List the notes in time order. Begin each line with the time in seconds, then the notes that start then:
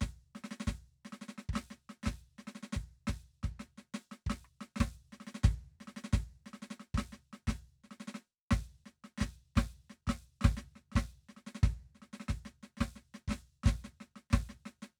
0.01 kick, snare
0.35 snare
0.44 snare
0.51 snare
0.60 snare
0.67 kick, snare
1.05 snare
1.12 snare
1.21 snare
1.28 snare
1.38 snare
1.49 kick
1.53 snare
1.55 snare
1.70 snare
1.89 snare
2.03 snare
2.06 kick, snare
2.38 snare
2.47 snare
2.55 snare
2.63 snare
2.73 kick, snare
3.07 kick, snare
3.43 kick, snare
3.60 snare
3.78 snare
3.94 snare
4.11 snare
4.26 kick, snare
4.30 snare
4.45 cross-stick
4.61 snare
4.76 snare
4.80 kick, snare
5.12 snare
5.20 snare
5.27 snare
5.34 snare
5.43 kick, snare
5.80 snare
5.87 snare
5.96 snare
6.04 snare
6.13 kick, snare
6.46 snare
6.53 snare
6.62 snare
6.70 snare
6.80 snare
6.94 kick, snare
6.98 snare
7.12 snare
7.33 snare
7.47 kick, snare
7.84 snare
7.91 snare
8.00 snare
8.08 snare
8.14 snare
8.51 kick, snare
8.86 snare
9.04 snare
9.18 snare
9.21 kick, snare
9.56 kick, snare
9.57 snare
9.90 snare
10.07 kick, snare
10.09 snare
10.41 snare
10.44 kick, snare
10.57 snare
10.76 snare
10.92 kick, snare
10.97 snare
11.29 snare
11.37 snare
11.47 snare
11.55 snare
11.63 kick, snare
11.95 snare
12.02 snare
12.13 snare
12.20 snare
12.28 kick, snare
12.45 snare
12.63 snare
12.77 kick, snare
12.81 snare
12.96 snare
13.14 snare
13.28 kick, snare
13.31 snare
13.63 kick, snare
13.67 snare
13.84 snare
14.00 snare
14.16 snare
14.30 snare
14.33 kick, snare
14.49 snare
14.66 snare
14.82 snare